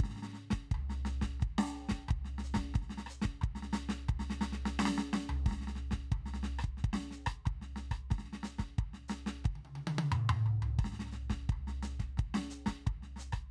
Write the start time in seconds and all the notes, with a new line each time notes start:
0.01 kick, snare
0.09 snare
0.14 snare
0.17 snare
0.23 snare
0.29 snare
0.34 snare
0.51 kick, snare
0.72 kick, floor tom
0.90 snare
1.06 snare, hi-hat pedal
1.22 kick, snare
1.40 kick, snare
1.59 snare
1.74 snare, hi-hat pedal
1.89 kick, snare
2.09 kick, floor tom
2.25 snare
2.39 snare
2.45 hi-hat pedal
2.55 kick, snare
2.75 kick, snare
2.82 snare
2.89 snare
2.90 snare
2.98 snare
3.07 cross-stick, hi-hat pedal
3.22 kick, snare
3.42 kick, floor tom
3.56 snare
3.63 snare
3.74 snare, hi-hat pedal
3.90 snare
4.09 kick, floor tom
4.20 snare
4.31 snare
4.42 snare
4.53 snare
4.66 snare
4.80 snare
4.86 snare
4.99 snare
5.14 snare
5.30 floor tom
5.37 cross-stick
5.47 kick, snare
5.52 snare
5.56 snare
5.62 snare
5.68 snare
5.76 snare
5.92 kick, snare
6.12 kick, floor tom
6.27 snare
6.35 snare
6.44 snare, hi-hat pedal
6.60 cross-stick
6.65 kick
6.78 snare
6.85 kick
6.94 snare
7.12 snare, hi-hat pedal
7.27 kick, cross-stick
7.46 kick, floor tom
7.62 snare
7.77 snare, hi-hat pedal
7.92 kick, cross-stick
8.11 kick, snare
8.19 snare
8.24 snare
8.34 snare
8.44 snare, hi-hat pedal
8.59 kick, snare
8.79 kick, floor tom
8.94 snare
9.09 snare, hi-hat pedal
9.27 snare
9.45 kick, high tom
9.56 high tom
9.66 high tom
9.76 high tom
9.88 high tom
9.99 high tom
10.12 mid tom
10.30 mid tom
10.47 floor tom
10.63 floor tom
10.79 kick, cross-stick
10.85 snare
10.90 snare
10.93 snare
11.00 snare
11.06 snare
11.12 snare, hi-hat pedal
11.30 kick, snare
11.50 kick, floor tom
11.68 snare
11.83 snare, hi-hat pedal
12.00 kick, snare
12.18 kick, snare
12.35 snare
12.51 snare, hi-hat pedal
12.67 kick, snare
12.87 kick, floor tom
13.03 snare
13.17 snare, hi-hat pedal
13.33 kick, cross-stick